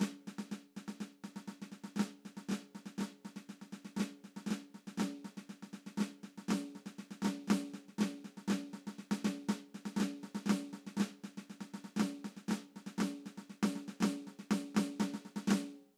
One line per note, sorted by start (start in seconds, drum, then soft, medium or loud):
0.00 snare soft
0.00 snare medium
0.27 snare soft
0.38 snare soft
0.51 snare soft
0.76 snare soft
0.88 snare soft
1.00 snare soft
1.24 snare soft
1.36 snare soft
1.48 snare soft
1.62 snare soft
1.72 snare soft
1.84 snare soft
1.96 snare soft
1.99 snare medium
2.25 snare soft
2.37 snare soft
2.49 snare medium
2.51 snare medium
2.75 snare soft
2.86 snare soft
2.98 snare soft
3.01 snare medium
3.25 snare soft
3.36 snare soft
3.49 snare soft
3.61 snare soft
3.72 snare soft
3.85 snare soft
3.96 snare medium
4.00 snare medium
4.24 snare soft
4.36 snare soft
4.50 snare medium
4.74 snare soft
4.87 snare soft
4.97 snare soft
5.00 snare medium
5.24 snare soft
5.37 snare soft
5.49 snare soft
5.62 snare soft
5.73 snare soft
5.86 snare soft
5.97 snare medium
6.00 snare medium
6.23 snare soft
6.38 snare soft
6.48 snare medium
6.50 snare medium
6.75 snare soft
6.86 snare soft
6.98 snare soft
7.11 snare soft
7.22 snare medium
7.25 snare medium
7.47 snare soft
7.50 snare medium
7.74 snare soft
7.88 snare soft
8.01 snare medium
8.24 snare soft
8.37 snare soft
8.48 snare medium
8.50 snare medium
8.73 snare soft
8.87 snare soft
8.98 snare soft
9.11 snare medium
9.24 snare medium
9.49 snare medium
9.74 snare soft
9.85 snare soft
9.96 snare medium
10.00 snare medium
10.23 snare soft
10.35 snare soft
10.46 snare medium
10.49 snare medium
10.73 snare soft
10.87 snare soft
10.97 snare medium
11.00 snare medium
11.24 snare soft
11.37 snare soft
11.50 snare soft
11.61 snare soft
11.74 snare soft
11.84 snare soft
11.96 snare medium
12.00 snare medium
12.24 snare soft
12.37 snare soft
12.48 snare medium
12.51 snare medium
12.76 snare soft
12.86 snare soft
12.98 snare medium
13.00 snare medium
13.26 snare soft
13.38 snare soft
13.50 snare soft
13.63 snare medium
13.75 snare soft
13.88 snare soft
14.00 snare medium
14.03 snare medium
14.27 snare soft
14.39 snare soft
14.51 snare medium
14.75 snare soft
14.76 snare medium
15.00 snare medium
15.14 snare soft
15.25 snare soft
15.36 snare soft
15.47 snare medium
15.50 snare loud